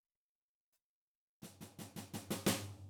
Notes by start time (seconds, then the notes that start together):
0.72 hi-hat pedal
1.42 snare, floor tom
1.61 snare, floor tom
1.79 snare, floor tom
1.96 snare, floor tom
2.14 snare, floor tom
2.30 snare, floor tom
2.46 snare, floor tom